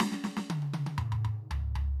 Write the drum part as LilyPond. \new DrumStaff \drummode { \time 4/4 \tempo 4 = 120 sn16 sn16 sn16 sn16 tommh16 tommh16 tommh16 tommh16 toml16 toml16 toml8 tomfh8 tomfh8 | }